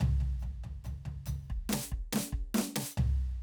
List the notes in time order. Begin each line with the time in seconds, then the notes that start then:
0.00 floor tom, hi-hat pedal, high tom
0.20 floor tom, high tom
0.40 floor tom, hi-hat pedal, high tom
0.63 floor tom, high tom
0.84 floor tom, hi-hat pedal, high tom
1.05 floor tom, high tom
1.26 floor tom, hi-hat pedal, high tom
1.50 kick
1.69 snare
1.73 snare
1.92 kick
2.13 snare
2.16 snare
2.32 kick
2.54 snare
2.58 snare
2.76 snare
2.89 hi-hat pedal
2.97 floor tom